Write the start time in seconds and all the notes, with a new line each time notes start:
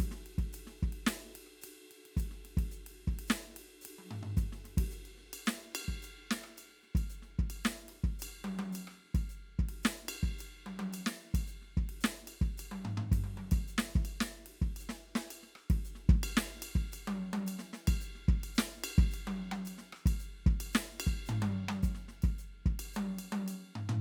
0.00 kick, hi-hat pedal, ride
0.12 snare
0.27 ride
0.39 kick, ride
0.54 hi-hat pedal, ride
0.68 snare
0.78 hi-hat pedal
0.84 kick
0.93 ride
1.07 snare, hi-hat pedal, ride
1.36 ride
1.47 cross-stick
1.62 hi-hat pedal, ride
1.92 ride
2.06 ride
2.18 kick, hi-hat pedal, ride
2.31 snare
2.45 snare, ride
2.58 kick, ride
2.72 snare, hi-hat pedal
2.87 ride
3.04 snare
3.08 kick
3.20 ride
3.28 snare, hi-hat pedal
3.57 ride
3.69 cross-stick
3.82 hi-hat pedal
3.86 ride
3.99 high tom
4.07 hi-hat pedal
4.12 floor tom
4.24 floor tom
4.38 kick, hi-hat pedal, ride
4.53 snare
4.65 snare, ride
4.78 kick, ride
4.92 snare, hi-hat pedal
5.06 ride bell
5.19 snare
5.34 ride bell
5.46 snare, hi-hat pedal
5.76 ride bell
5.85 kick, snare
6.03 hi-hat pedal, ride bell
6.32 snare
6.44 cross-stick
6.58 hi-hat pedal, ride bell
6.70 snare
6.82 snare, hi-hat pedal
6.96 kick, ride bell
7.10 hi-hat pedal
7.23 snare
7.40 kick
7.51 ride bell
7.65 snare, hi-hat pedal
7.89 cross-stick, ride, floor tom
8.05 kick
8.20 hi-hat pedal, ride bell
8.45 high tom
8.60 high tom
8.73 hi-hat pedal, ride bell
8.88 cross-stick
9.15 kick, ride bell
9.30 hi-hat pedal
9.46 snare
9.60 kick
9.70 snare, ride, floor tom
9.84 snare, hi-hat pedal
10.09 ride bell
10.24 kick
10.39 hi-hat pedal, ride bell
10.67 high tom
10.80 high tom
10.93 hi-hat pedal, ride bell
11.07 snare
11.35 kick, ride bell
11.48 hi-hat pedal
11.63 snare
11.78 kick
11.90 ride
12.01 snare, hi-hat pedal
12.28 ride bell
12.42 kick
12.58 hi-hat pedal, ride bell
12.72 high tom
12.86 floor tom
12.98 floor tom
13.12 kick, hi-hat pedal, ride
13.25 high tom
13.38 high tom
13.52 kick, ride bell
13.69 hi-hat pedal
13.79 snare
13.96 kick
14.06 ride bell
14.21 snare, hi-hat pedal
14.47 ride
14.62 kick
14.77 hi-hat pedal, ride bell
14.90 snare
15.16 snare
15.31 hi-hat pedal, ride bell
15.44 snare
15.56 cross-stick
15.71 kick, ride
15.85 hi-hat pedal
15.96 snare
16.10 kick
16.24 ride bell
16.38 snare, hi-hat pedal
16.47 snare
16.63 ride bell
16.76 kick
16.93 hi-hat pedal, ride bell
17.08 high tom
17.34 high tom
17.47 hi-hat pedal, ride bell
17.60 snare
17.74 snare
17.88 kick, ride bell
18.01 hi-hat pedal
18.16 snare
18.29 kick
18.44 ride bell
18.56 snare, hi-hat pedal
18.85 ride bell
18.99 kick
19.12 hi-hat pedal, ride bell
19.28 high tom
19.52 high tom
19.66 hi-hat pedal, ride bell
19.79 snare
19.93 cross-stick
20.07 kick, ride bell
20.20 hi-hat pedal
20.47 kick
20.61 ride bell
20.74 snare, hi-hat pedal
21.01 ride bell
21.08 kick
21.27 floor tom, hi-hat pedal
21.43 high tom
21.69 high tom
21.83 kick, hi-hat pedal, ride bell
21.95 snare
22.09 snare
22.23 kick, ride bell
22.39 hi-hat pedal
22.54 snare
22.67 kick
22.80 ride bell
22.94 hi-hat pedal, high tom
23.19 ride bell
23.33 high tom
23.49 hi-hat pedal, ride bell
23.76 floor tom
23.90 floor tom